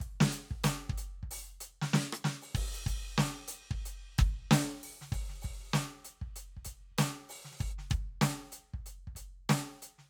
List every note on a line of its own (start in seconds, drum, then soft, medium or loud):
0.01 kick medium
0.01 open hi-hat soft
0.21 snare loud
0.27 snare soft
0.33 closed hi-hat medium
0.51 kick medium
0.64 closed hi-hat loud
0.64 snare loud
0.73 snare soft
0.90 kick medium
0.98 closed hi-hat medium
1.24 kick medium
1.31 open hi-hat medium
1.61 closed hi-hat medium
1.82 snare medium
1.94 snare loud
2.13 cross-stick medium
2.25 snare medium
2.42 open hi-hat medium
2.55 kick loud
2.55 crash medium
2.74 closed hi-hat medium
2.87 closed hi-hat medium
2.87 kick loud
3.18 snare loud
3.48 closed hi-hat loud
3.71 kick medium
3.86 closed hi-hat medium
4.19 kick loud
4.19 closed hi-hat medium
4.52 closed hi-hat medium
4.52 snare loud
4.84 open hi-hat medium
4.93 open hi-hat soft
5.02 snare soft
5.13 open hi-hat medium
5.13 kick medium
5.30 snare soft
5.42 open hi-hat medium
5.42 kick medium
5.74 open hi-hat medium
5.74 snare loud
5.74 hi-hat pedal soft
6.05 closed hi-hat medium
6.22 kick medium
6.36 closed hi-hat medium
6.57 kick soft
6.65 closed hi-hat medium
6.65 kick soft
6.92 kick soft
6.99 closed hi-hat loud
6.99 snare loud
7.30 open hi-hat medium
7.37 open hi-hat soft
7.45 snare soft
7.53 snare soft
7.60 open hi-hat medium
7.60 kick medium
7.79 snare soft
7.91 closed hi-hat soft
7.91 kick loud
8.22 closed hi-hat medium
8.22 snare loud
8.53 closed hi-hat medium
8.74 kick medium
8.87 closed hi-hat medium
9.08 kick medium
9.16 closed hi-hat medium
9.16 kick soft
9.50 closed hi-hat medium
9.50 snare loud
9.83 closed hi-hat medium
9.99 snare soft